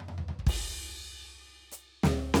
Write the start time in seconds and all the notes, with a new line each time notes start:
0.00 mid tom
0.09 mid tom
0.18 floor tom
0.29 floor tom
0.39 kick, floor tom
0.47 kick, crash
1.72 hi-hat pedal
2.04 snare, floor tom
2.34 snare, floor tom